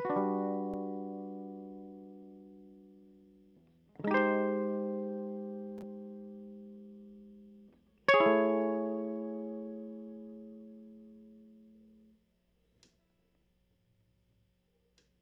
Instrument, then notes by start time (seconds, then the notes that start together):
electric guitar
0.00 B4
0.05 F#4
0.10 D4
0.17 G3
4.05 G#3 D#4
4.11 G4 C5
8.09 C#5
8.14 G#4
8.20 E4
8.26 A3